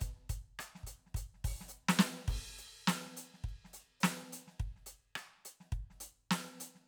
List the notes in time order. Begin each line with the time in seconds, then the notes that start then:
0.01 closed hi-hat, kick
0.30 closed hi-hat, kick
0.59 closed hi-hat, cross-stick
0.75 snare
0.83 closed hi-hat, kick
1.06 snare
1.15 closed hi-hat, kick
1.34 snare
1.44 open hi-hat, kick
1.61 snare
1.69 hi-hat pedal
1.89 snare
1.99 snare
2.19 snare
2.28 kick, crash
2.58 closed hi-hat
2.88 closed hi-hat, snare
3.06 snare
3.17 closed hi-hat
3.34 snare
3.44 kick
3.49 closed hi-hat
3.65 snare
3.73 open hi-hat
4.00 closed hi-hat, snare, hi-hat pedal
4.22 snare
4.33 closed hi-hat
4.48 snare
4.60 kick, closed hi-hat
4.76 snare
4.86 closed hi-hat
5.16 closed hi-hat, cross-stick
5.38 snare
5.45 closed hi-hat
5.60 snare
5.72 kick, closed hi-hat
5.90 snare
6.00 closed hi-hat
6.31 closed hi-hat, snare
6.60 closed hi-hat
6.75 snare